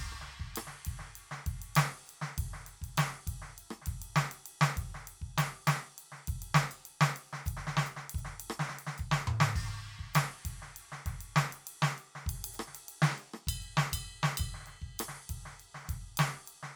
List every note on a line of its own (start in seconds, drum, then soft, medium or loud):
0.02 kick soft
0.12 cross-stick soft
0.21 snare soft
0.40 kick soft
0.45 kick soft
0.55 kick soft
0.55 cross-stick medium
0.55 hi-hat pedal soft
0.55 ride loud
0.67 snare soft
0.85 kick soft
0.85 ride medium
0.93 kick soft
0.99 snare soft
1.15 hi-hat pedal soft
1.15 ride medium
1.31 snare medium
1.44 kick soft
1.44 snare soft
1.44 ride medium
1.53 kick soft
1.62 ride medium
1.75 snare loud
1.75 hi-hat pedal medium
1.75 ride loud
2.06 hi-hat pedal soft
2.06 ride medium
2.21 snare medium
2.38 kick medium
2.38 hi-hat pedal soft
2.38 ride medium
2.45 kick soft
2.53 snare soft
2.65 snare soft
2.65 ride medium
2.81 kick soft
2.81 ride medium
2.97 snare loud
2.97 hi-hat pedal medium
2.97 ride loud
3.08 snare soft
3.27 kick soft
3.27 ride medium
3.33 kick soft
3.42 snare soft
3.58 hi-hat pedal soft
3.58 ride medium
3.70 cross-stick medium
3.81 snare soft
3.86 kick soft
3.86 ride medium
3.94 kick soft
4.02 ride medium
4.16 snare loud
4.16 hi-hat pedal medium
4.29 snare soft
4.29 ride medium
4.46 ride medium
4.61 snare loud
4.77 kick soft
4.77 ride medium
4.83 kick soft
4.94 snare soft
5.03 snare soft
5.03 ride medium
5.21 kick soft
5.38 snare loud
5.38 hi-hat pedal loud
5.38 ride loud
5.64 snare loud
5.64 hi-hat pedal soft
5.64 ride medium
5.73 snare soft
5.98 hi-hat pedal soft
5.98 ride medium
6.12 snare soft
6.27 kick soft
6.27 ride medium
6.35 kick soft
6.42 ride medium
6.54 snare loud
6.54 hi-hat pedal medium
6.71 ride bell soft
6.85 ride medium
7.01 snare loud
7.09 hi-hat pedal soft
7.16 ride medium
7.33 snare medium
7.46 kick soft
7.46 hi-hat pedal loud
7.46 ride medium
7.53 kick soft
7.53 snare soft
7.77 snare medium
7.86 hi-hat pedal soft
7.86 ride bell soft
7.96 snare medium
8.10 ride medium
8.14 kick soft
8.14 hi-hat pedal medium
8.21 kick soft
8.21 snare soft
8.40 ride medium
8.50 cross-stick medium
8.59 snare medium
8.69 snare medium
8.79 ride medium
8.87 snare medium
8.98 kick soft
8.98 ride bell soft
9.08 kick soft
9.08 snare loud
9.27 mid tom loud
9.40 snare loud
9.55 kick medium
9.55 crash medium
9.63 kick soft
9.63 high tom soft
9.99 kick soft
10.13 snare loud
10.13 hi-hat pedal medium
10.13 ride loud
10.45 kick soft
10.45 ride medium
10.62 snare soft
10.76 ride medium
10.92 snare soft
11.06 kick soft
11.06 snare soft
11.06 ride medium
11.13 kick soft
11.21 ride medium
11.36 snare loud
11.36 hi-hat pedal medium
11.47 snare soft
11.52 ride medium
11.67 ride medium
11.82 snare loud
11.93 hi-hat pedal soft
11.98 ride soft
12.15 snare soft
12.26 kick soft
12.26 ride loud
12.34 kick soft
12.34 snare soft
12.44 ride loud
12.53 hi-hat pedal loud
12.59 cross-stick medium
12.67 snare soft
12.75 ride medium
12.88 ride medium
13.02 snare loud
13.16 hi-hat pedal soft
13.16 ride soft
13.34 cross-stick medium
13.47 kick soft
13.47 hi-hat pedal soft
13.47 ride bell loud
13.54 kick soft
13.62 ride soft
13.77 snare loud
13.93 kick soft
13.93 ride bell loud
14.23 snare medium
14.37 kick medium
14.37 hi-hat pedal soft
14.37 ride bell loud
14.47 kick soft
14.54 snare soft
14.60 snare soft
14.66 snare soft
14.66 ride soft
14.81 kick soft
14.98 cross-stick medium
14.98 hi-hat pedal medium
14.98 ride loud
15.08 snare soft
15.29 kick soft
15.29 ride medium
15.35 kick soft
15.45 snare soft
15.60 ride soft
15.74 snare soft
15.89 kick soft
15.89 ride medium
15.95 kick soft
16.17 snare loud
16.17 hi-hat pedal medium
16.17 ride loud
16.27 snare soft
16.45 hi-hat pedal soft
16.45 ride medium
16.63 snare medium